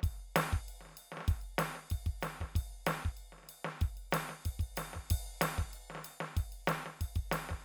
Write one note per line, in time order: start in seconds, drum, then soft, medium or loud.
0.00 kick medium
0.00 snare soft
0.00 ride medium
0.36 snare loud
0.36 hi-hat pedal medium
0.36 ride loud
0.53 kick medium
0.68 ride soft
0.81 snare soft
0.85 snare soft
0.89 snare soft
0.91 snare soft
0.97 hi-hat pedal soft
0.97 ride medium
1.12 snare soft
1.17 snare soft
1.20 snare soft
1.28 kick medium
1.28 ride medium
1.41 ride soft
1.58 snare loud
1.58 hi-hat pedal medium
1.58 ride medium
1.75 snare soft
1.82 snare soft
1.90 kick medium
1.90 ride medium
2.06 kick soft
2.06 ride soft
2.21 snare medium
2.21 hi-hat pedal medium
2.21 ride medium
2.40 kick soft
2.40 snare soft
2.55 kick medium
2.55 ride medium
2.86 snare loud
2.86 hi-hat pedal medium
2.86 ride medium
3.05 kick soft
3.13 snare soft
3.13 ride soft
3.32 snare soft
3.38 snare soft
3.43 snare soft
3.46 snare soft
3.46 hi-hat pedal soft
3.46 ride medium
3.64 snare medium
3.81 kick medium
3.81 ride soft
3.97 ride soft
4.11 snare loud
4.11 hi-hat pedal medium
4.11 ride medium
4.29 snare soft
4.45 kick soft
4.45 ride medium
4.59 kick soft
4.59 ride soft
4.76 snare medium
4.76 hi-hat pedal medium
4.76 ride medium
4.93 kick soft
4.93 snare soft
5.10 kick medium
5.10 ride loud
5.41 snare loud
5.41 hi-hat pedal medium
5.41 ride loud
5.58 kick medium
5.58 snare soft
5.73 ride soft
5.90 snare soft
5.95 snare soft
5.97 snare soft
6.04 hi-hat pedal medium
6.04 ride medium
6.20 snare medium
6.36 kick medium
6.36 ride medium
6.52 ride soft
6.67 snare loud
6.67 hi-hat pedal medium
6.67 ride medium
6.86 snare soft
7.01 kick soft
7.01 ride medium
7.15 kick medium
7.15 ride soft
7.31 snare medium
7.31 hi-hat pedal medium
7.31 ride medium
7.49 kick soft
7.49 snare soft